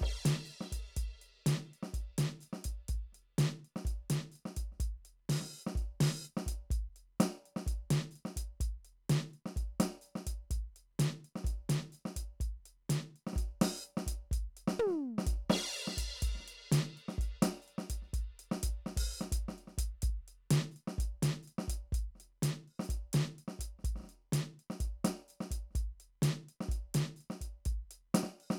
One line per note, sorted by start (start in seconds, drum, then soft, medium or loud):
0.01 kick soft
0.01 crash medium
0.25 closed hi-hat loud
0.25 snare medium
0.45 hi-hat pedal medium
0.51 closed hi-hat soft
0.61 snare soft
0.72 closed hi-hat medium
0.72 kick soft
0.96 closed hi-hat medium
0.96 kick soft
1.21 closed hi-hat soft
1.46 closed hi-hat loud
1.46 snare medium
1.58 snare soft
1.73 closed hi-hat soft
1.83 snare soft
1.93 closed hi-hat medium
1.93 kick soft
2.18 closed hi-hat loud
2.18 snare medium
2.40 closed hi-hat soft
2.40 hi-hat pedal medium
2.53 snare soft
2.64 closed hi-hat medium
2.64 kick soft
2.88 closed hi-hat medium
2.88 kick soft
2.94 kick soft
3.12 snare soft
3.12 closed hi-hat soft
3.38 closed hi-hat loud
3.38 snare medium
3.64 closed hi-hat soft
3.76 snare soft
3.85 closed hi-hat medium
3.85 kick soft
4.10 closed hi-hat loud
4.10 snare medium
4.32 closed hi-hat soft
4.32 hi-hat pedal soft
4.45 snare soft
4.56 closed hi-hat medium
4.56 kick soft
4.72 snare soft
4.80 closed hi-hat medium
4.80 kick soft
5.05 closed hi-hat soft
5.29 open hi-hat loud
5.29 snare medium
5.41 snare soft
5.55 open hi-hat soft
5.61 hi-hat pedal medium
5.66 snare soft
5.75 kick soft
5.75 closed hi-hat soft
6.00 open hi-hat loud
6.00 snare medium
6.25 hi-hat pedal medium
6.37 snare medium
6.46 closed hi-hat medium
6.46 kick soft
6.70 closed hi-hat medium
6.70 kick soft
6.96 closed hi-hat soft
7.20 closed hi-hat loud
7.20 snare medium
7.45 closed hi-hat soft
7.56 snare soft
7.66 closed hi-hat medium
7.66 kick soft
7.90 closed hi-hat loud
7.90 snare medium
8.11 hi-hat pedal soft
8.15 closed hi-hat soft
8.25 snare soft
8.36 closed hi-hat loud
8.36 kick soft
8.60 closed hi-hat medium
8.60 kick soft
8.85 closed hi-hat soft
9.09 closed hi-hat loud
9.09 snare medium
9.28 hi-hat pedal soft
9.33 closed hi-hat soft
9.46 snare soft
9.56 closed hi-hat medium
9.56 kick soft
9.80 closed hi-hat loud
9.80 snare medium
10.01 hi-hat pedal medium
10.06 closed hi-hat soft
10.15 snare soft
10.26 closed hi-hat medium
10.26 kick soft
10.50 closed hi-hat medium
10.50 kick soft
10.56 kick soft
10.76 closed hi-hat soft
10.99 closed hi-hat loud
10.99 snare medium
11.24 closed hi-hat soft
11.36 snare soft
11.43 closed hi-hat medium
11.43 kick soft
11.43 snare soft
11.69 closed hi-hat loud
11.69 snare medium
11.79 snare soft
11.92 closed hi-hat soft
11.92 hi-hat pedal medium
12.05 snare soft
12.16 closed hi-hat medium
12.16 kick soft
12.40 closed hi-hat medium
12.40 kick soft
12.65 closed hi-hat soft
12.89 closed hi-hat loud
12.89 snare medium
13.16 closed hi-hat soft
13.27 snare soft
13.33 kick soft
13.33 snare soft
13.38 closed hi-hat medium
13.61 open hi-hat loud
13.61 snare medium
13.83 closed hi-hat soft
13.83 hi-hat pedal medium
13.97 snare medium
14.06 closed hi-hat loud
14.06 kick soft
14.31 closed hi-hat medium
14.31 kick soft
14.37 kick soft
14.57 closed hi-hat medium
14.67 snare medium
14.79 mid tom loud
14.87 snare soft
14.90 snare soft
15.18 snare medium
15.26 closed hi-hat medium
15.26 kick soft
15.50 snare medium
15.50 crash loud
15.70 hi-hat pedal soft
15.76 closed hi-hat soft
15.87 snare soft
15.97 closed hi-hat loud
15.97 kick soft
16.22 closed hi-hat loud
16.22 kick soft
16.35 snare soft
16.40 snare soft
16.48 closed hi-hat medium
16.72 closed hi-hat loud
16.72 snare loud
16.97 closed hi-hat soft
17.08 snare soft
17.18 kick soft
17.18 closed hi-hat medium
17.42 closed hi-hat loud
17.42 snare medium
17.62 hi-hat pedal soft
17.68 closed hi-hat soft
17.78 snare soft
17.90 closed hi-hat medium
17.90 kick soft
18.02 snare soft
18.13 closed hi-hat medium
18.13 kick soft
18.19 kick soft
18.39 closed hi-hat medium
18.51 snare medium
18.63 closed hi-hat loud
18.63 kick soft
18.68 kick soft
18.86 snare soft
18.96 open hi-hat loud
18.96 kick soft
19.02 kick soft
19.19 snare soft
19.19 hi-hat pedal soft
19.32 closed hi-hat loud
19.32 kick soft
19.48 snare soft
19.58 closed hi-hat soft
19.67 snare soft
19.78 closed hi-hat loud
19.78 kick soft
20.02 closed hi-hat medium
20.02 kick soft
20.09 kick soft
20.28 closed hi-hat soft
20.50 closed hi-hat loud
20.50 snare loud
20.71 hi-hat pedal soft
20.76 closed hi-hat soft
20.87 snare soft
20.98 closed hi-hat medium
20.98 kick soft
21.22 closed hi-hat loud
21.22 snare medium
21.43 hi-hat pedal soft
21.47 closed hi-hat soft
21.58 snare medium
21.68 closed hi-hat loud
21.68 kick soft
21.92 closed hi-hat medium
21.92 kick soft
22.15 snare soft
22.20 closed hi-hat soft
22.42 closed hi-hat loud
22.42 snare medium
22.68 open hi-hat soft
22.79 snare soft
22.83 hi-hat pedal medium
22.89 closed hi-hat medium
22.89 kick soft
23.13 closed hi-hat loud
23.13 snare medium
23.38 closed hi-hat soft
23.48 snare soft
23.59 closed hi-hat medium
23.59 kick soft
23.79 snare soft
23.84 closed hi-hat medium
23.84 kick soft
23.96 snare soft
24.00 snare soft
24.04 snare soft
24.07 snare soft
24.07 closed hi-hat soft
24.32 closed hi-hat loud
24.32 snare medium
24.59 closed hi-hat soft
24.70 snare soft
24.80 closed hi-hat medium
24.80 kick soft
25.04 closed hi-hat loud
25.04 snare medium
25.28 closed hi-hat soft
25.28 hi-hat pedal medium
25.40 snare soft
25.51 closed hi-hat medium
25.51 kick soft
25.71 snare soft
25.75 closed hi-hat medium
25.75 kick soft
25.81 kick soft
26.00 closed hi-hat soft
26.22 closed hi-hat loud
26.22 snare medium
26.48 closed hi-hat soft
26.61 snare soft
26.68 closed hi-hat medium
26.68 kick soft
26.94 closed hi-hat loud
26.94 snare medium
27.16 hi-hat pedal soft
27.20 closed hi-hat soft
27.30 snare soft
27.41 closed hi-hat medium
27.41 kick soft
27.65 closed hi-hat medium
27.65 kick soft
27.72 kick soft
27.91 closed hi-hat medium
28.14 closed hi-hat loud
28.14 snare medium
28.23 snare soft
28.40 open hi-hat soft
28.50 snare medium